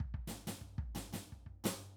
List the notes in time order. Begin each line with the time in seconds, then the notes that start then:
0.00 kick
0.14 kick
0.27 snare, floor tom
0.47 snare, floor tom
0.61 kick
0.78 kick
0.95 snare, floor tom
1.13 snare, floor tom
1.32 kick
1.46 kick
1.64 snare, floor tom